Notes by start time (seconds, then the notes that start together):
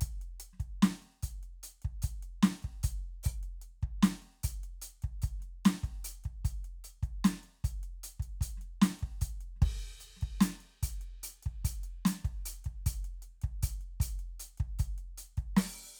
0.01 kick, closed hi-hat
0.22 closed hi-hat
0.40 closed hi-hat
0.53 snare
0.60 kick, closed hi-hat
0.83 closed hi-hat, snare
1.03 closed hi-hat
1.23 closed hi-hat, kick
1.43 closed hi-hat
1.63 closed hi-hat
1.82 kick, closed hi-hat
2.02 closed hi-hat, kick
2.23 closed hi-hat
2.43 closed hi-hat, snare
2.63 kick, closed hi-hat
2.83 closed hi-hat, kick
3.23 open hi-hat, kick, hi-hat pedal
3.43 closed hi-hat
3.62 closed hi-hat
3.82 kick, closed hi-hat
3.92 kick
4.03 closed hi-hat, snare
4.22 closed hi-hat
4.44 closed hi-hat, kick
4.64 closed hi-hat
4.82 closed hi-hat
5.02 kick, closed hi-hat
5.22 closed hi-hat, kick, snare
5.40 snare, closed hi-hat
5.65 closed hi-hat, snare
5.83 kick, closed hi-hat
6.05 closed hi-hat
6.24 kick, closed hi-hat
6.45 closed hi-hat, kick
6.65 closed hi-hat
6.84 closed hi-hat
7.03 kick, closed hi-hat
7.25 closed hi-hat, snare
7.43 closed hi-hat
7.64 closed hi-hat, kick
7.83 closed hi-hat
8.04 closed hi-hat
8.20 kick, closed hi-hat
8.41 closed hi-hat, kick
8.57 snare
8.61 closed hi-hat
8.82 closed hi-hat, snare
8.99 kick, closed hi-hat
9.21 closed hi-hat, kick
9.41 closed hi-hat
9.56 snare
9.62 kick, crash
9.79 closed hi-hat
10.00 closed hi-hat
10.17 snare
10.21 kick, closed hi-hat
10.41 closed hi-hat, snare
10.61 closed hi-hat
10.83 closed hi-hat, kick
11.01 closed hi-hat
11.23 closed hi-hat
11.43 kick, closed hi-hat
11.65 closed hi-hat, kick
11.84 closed hi-hat
12.05 closed hi-hat, snare
12.25 kick, closed hi-hat
12.46 closed hi-hat
12.65 kick, closed hi-hat
12.86 closed hi-hat, kick
13.05 closed hi-hat
13.22 closed hi-hat
13.42 kick, closed hi-hat
13.63 closed hi-hat, kick
13.81 closed hi-hat
14.00 closed hi-hat, kick
14.19 closed hi-hat
14.40 closed hi-hat
14.58 kick, closed hi-hat
14.79 closed hi-hat, kick
14.98 closed hi-hat
15.18 closed hi-hat
15.37 kick, closed hi-hat
15.57 open hi-hat, snare